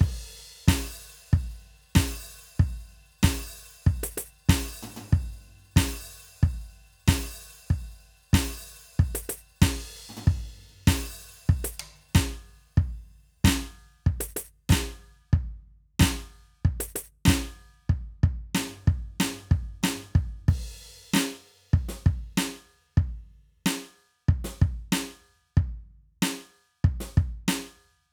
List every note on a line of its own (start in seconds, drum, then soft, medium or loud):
0.01 kick loud
0.01 crash loud
0.68 open hi-hat loud
0.68 kick loud
0.68 snare loud
1.33 kick loud
1.95 open hi-hat loud
1.95 kick loud
1.95 snare loud
2.60 kick loud
2.90 snare soft
3.23 open hi-hat loud
3.23 kick loud
3.23 snare loud
3.87 kick loud
4.03 high tom loud
4.18 high tom loud
4.49 open hi-hat loud
4.49 kick loud
4.49 snare loud
4.83 floor tom loud
4.97 floor tom loud
5.13 kick loud
5.76 open hi-hat loud
5.76 kick loud
5.76 snare loud
6.43 kick loud
7.08 open hi-hat loud
7.08 kick loud
7.08 snare loud
7.70 kick loud
8.33 open hi-hat loud
8.33 kick loud
8.33 snare loud
8.99 kick loud
9.15 high tom loud
9.29 high tom loud
9.62 kick loud
9.62 snare loud
9.62 crash loud
10.09 floor tom medium
10.17 floor tom loud
10.27 kick loud
10.88 open hi-hat loud
10.88 kick loud
10.88 snare loud
11.04 snare soft
11.49 kick loud
11.64 high tom loud
11.80 high tom loud
12.15 kick loud
12.15 snare loud
12.78 kick loud
13.45 kick loud
13.45 snare loud
13.48 snare loud
14.07 kick loud
14.21 high tom loud
14.37 high tom loud
14.69 kick loud
14.69 snare loud
14.72 snare loud
15.33 kick loud
16.00 kick loud
16.00 snare loud
16.03 snare loud
16.65 kick loud
16.80 high tom loud
16.96 high tom loud
17.26 kick loud
17.26 snare loud
17.29 snare loud
17.90 kick loud
18.24 kick loud
18.55 snare loud
18.55 floor tom loud
18.88 kick loud
19.20 snare loud
19.20 floor tom loud
19.51 kick loud
19.83 snare loud
19.83 floor tom loud
20.15 kick loud
20.48 kick loud
20.48 crash loud
21.14 snare loud
21.16 snare loud
21.74 kick loud
21.89 snare medium
22.06 kick loud
22.38 snare loud
22.97 kick loud
23.66 snare loud
24.29 kick loud
24.45 snare loud
24.62 kick loud
24.92 snare loud
25.57 kick loud
26.22 snare loud
26.84 kick loud
27.01 snare medium
27.17 kick loud
27.48 snare loud